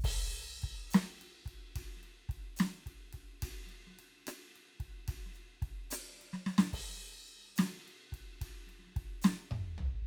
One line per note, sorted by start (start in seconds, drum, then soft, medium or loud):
0.01 kick soft
0.01 hi-hat pedal soft
0.01 crash loud
0.11 kick soft
0.59 snare soft
0.59 ride medium
0.64 kick soft
0.91 snare loud
0.91 hi-hat pedal medium
0.91 ride loud
1.18 snare soft
1.18 hi-hat pedal soft
1.18 ride medium
1.27 snare soft
1.40 snare soft
1.45 kick soft
1.45 hi-hat pedal soft
1.45 ride medium
1.76 kick soft
1.76 ride medium
1.81 kick soft
1.97 snare soft
2.02 snare soft
2.02 ride soft
2.29 kick soft
2.29 ride medium
2.57 snare medium
2.57 hi-hat pedal medium
2.57 ride medium
2.86 kick soft
2.86 ride medium
3.13 kick soft
3.13 ride medium
3.43 kick soft
3.43 ride loud
3.67 snare soft
3.67 ride soft
3.87 snare soft
3.90 snare soft
3.95 snare soft
3.99 ride medium
4.27 cross-stick medium
4.27 hi-hat pedal medium
4.27 ride loud
4.56 ride soft
4.80 kick soft
4.80 ride medium
5.08 kick soft
5.08 ride medium
5.26 snare soft
5.31 snare soft
5.31 hi-hat pedal soft
5.35 snare soft
5.35 ride soft
5.62 kick soft
5.62 ride medium
5.70 kick soft
5.91 cross-stick medium
5.91 hi-hat pedal loud
5.91 ride medium
6.22 ride medium
6.34 snare medium
6.47 snare medium
6.59 snare loud
6.73 kick soft
6.73 crash medium
6.80 kick soft
6.90 snare soft
6.97 snare soft
7.01 snare soft
7.29 ride soft
7.56 snare loud
7.56 hi-hat pedal medium
7.56 ride loud
7.85 snare soft
7.85 ride medium
8.11 kick soft
8.11 snare soft
8.11 ride medium
8.41 kick soft
8.41 ride medium
8.67 snare soft
8.67 ride soft
8.79 snare soft
8.84 snare soft
8.87 snare soft
8.97 kick soft
8.97 ride medium
9.22 snare loud
9.22 hi-hat pedal medium
9.22 ride medium
9.51 kick soft
9.51 mid tom loud
9.78 kick soft
9.78 floor tom loud